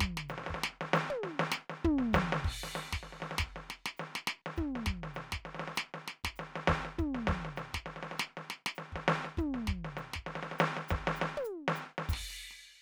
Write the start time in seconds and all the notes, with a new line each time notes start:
0.01 kick, snare
0.08 kick
0.18 snare
0.29 snare, hi-hat pedal
0.38 snare
0.44 snare
0.47 kick, snare
0.55 snare
0.64 snare
0.81 snare
0.94 snare, hi-hat pedal
1.10 high tom
1.24 snare
1.40 snare
1.52 snare, hi-hat pedal
1.70 snare
1.84 kick, floor tom
1.91 kick
1.94 kick
1.99 snare
2.14 kick, snare, hi-hat pedal
2.21 kick
2.33 snare
2.45 kick, crash
2.53 kick
2.64 snare
2.76 snare, hi-hat pedal
2.93 kick, snare
3.03 snare
3.13 snare
3.21 snare
3.22 snare
3.31 snare
3.39 kick, snare, hi-hat pedal
3.46 kick
3.56 snare
3.70 snare
3.86 snare
3.97 snare, hi-hat pedal
4.16 snare
4.28 snare
4.46 snare
4.57 kick, hi-hat pedal, floor tom
4.76 snare
4.86 kick, snare
4.97 kick
5.04 snare
5.14 snare, hi-hat pedal
5.33 kick, snare
5.46 snare
5.55 snare
5.60 snare
5.68 snare
5.76 snare, hi-hat pedal
5.94 snare
6.08 snare
6.24 kick, snare
6.36 snare, hi-hat pedal
6.56 snare
6.68 kick, snare
6.75 kick
6.78 kick
6.85 snare
6.98 kick, floor tom, hi-hat pedal
7.06 kick
7.15 snare
7.28 kick, snare
7.36 kick
7.38 kick
7.45 snare
7.57 snare, hi-hat pedal
7.74 kick, snare
7.86 snare
7.97 snare
8.03 snare
8.12 snare
8.19 snare, hi-hat pedal
8.38 snare
8.51 snare
8.67 snare
8.75 snare, hi-hat pedal
8.93 kick, snare
9.08 snare
9.25 snare
9.38 kick, hi-hat pedal, floor tom
9.44 kick
9.55 snare
9.68 kick, snare
9.76 kick
9.85 snare
9.97 snare, hi-hat pedal
10.14 kick, snare
10.27 snare
10.36 snare
10.43 snare
10.52 snare
10.59 snare, hi-hat pedal
10.77 snare
10.89 kick, snare, hi-hat pedal
10.98 kick
11.02 kick
11.08 snare
11.16 hi-hat pedal
11.22 snare
11.37 open hi-hat, high tom
11.45 hi-hat pedal
11.68 snare
11.76 hi-hat pedal
11.98 snare
12.09 kick, hi-hat pedal, crash
12.14 kick, snare
12.20 kick
12.31 snare
12.51 snare